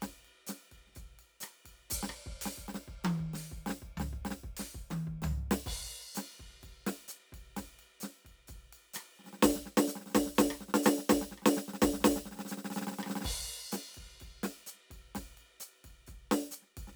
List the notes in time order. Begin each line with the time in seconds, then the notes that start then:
0.01 kick, snare, hi-hat pedal, ride
0.08 kick
0.24 ride
0.46 snare, hi-hat pedal, ride
0.71 kick, ride
0.87 snare
0.91 snare
0.95 kick, snare, hi-hat pedal, ride
1.19 ride
1.40 cross-stick, hi-hat pedal, ride
1.65 kick, ride
1.90 kick, hi-hat pedal
1.98 kick
2.03 snare
2.09 cross-stick
2.26 kick
2.32 kick
2.41 closed hi-hat
2.45 snare
2.57 kick
2.68 snare
2.74 snare
2.88 kick
3.04 snare, high tom
3.19 kick
3.33 snare, closed hi-hat
3.51 kick
3.66 snare
3.69 snare
3.82 kick
3.97 snare, floor tom
4.13 kick
4.25 snare
4.30 snare
4.43 kick
4.57 snare, closed hi-hat
4.74 kick
4.90 snare, high tom
5.07 kick
5.12 kick
5.22 snare, floor tom
5.51 snare
5.66 kick, crash
6.15 snare, hi-hat pedal, ride
6.38 kick, ride
6.49 snare
6.54 snare
6.60 kick, hi-hat pedal, ride
6.86 snare, ride
7.08 hi-hat pedal, ride
7.32 kick, ride
7.37 kick
7.56 kick, snare, hi-hat pedal, ride
7.63 kick
7.79 ride
8.00 snare, hi-hat pedal, ride
8.25 kick, ride
8.29 kick
8.47 kick, hi-hat pedal, ride
8.72 ride
8.93 cross-stick, hi-hat pedal, ride
9.15 hi-hat pedal
9.19 snare
9.24 snare
9.26 snare
9.33 snare
9.38 snare, hi-hat pedal
9.42 kick, snare
9.55 snare
9.66 snare
9.77 snare
9.87 snare, hi-hat pedal
9.95 snare
10.00 snare
10.06 snare, hi-hat pedal
10.10 snare
10.15 kick, snare
10.26 snare
10.35 kick, snare, hi-hat pedal
10.44 kick
10.50 cross-stick
10.60 snare
10.68 snare
10.74 snare
10.83 snare, hi-hat pedal
10.98 snare
11.09 kick, snare
11.21 snare
11.29 snare, hi-hat pedal
11.37 cross-stick
11.42 snare
11.46 snare
11.54 snare, hi-hat pedal
11.68 snare
11.73 snare
11.82 kick, snare
11.90 kick, snare
12.00 snare, hi-hat pedal
12.04 kick, snare
12.16 snare
12.25 snare
12.31 snare
12.39 snare
12.45 snare, hi-hat pedal
12.51 snare
12.57 snare
12.64 snare
12.70 snare, hi-hat pedal
12.76 snare
12.81 snare
12.87 snare
12.91 snare
12.96 snare, hi-hat pedal
13.03 cross-stick, snare
13.10 snare
13.15 snare
13.21 kick, snare, hi-hat pedal, crash
13.37 kick
13.71 snare, hi-hat pedal, ride
13.93 hi-hat pedal, ride
13.97 kick
14.04 snare
14.19 kick, hi-hat pedal, ride
14.26 kick
14.43 snare, ride
14.66 hi-hat pedal, ride
14.74 snare
14.90 kick, ride
14.96 kick
15.15 kick, snare, hi-hat pedal, ride
15.22 kick
15.37 ride
15.60 hi-hat pedal, ride
15.84 kick, ride
15.89 kick
16.06 kick, hi-hat pedal, ride
16.13 kick
16.31 snare, ride
16.51 hi-hat pedal, ride
16.62 snare
16.77 kick, ride
16.82 kick
16.87 snare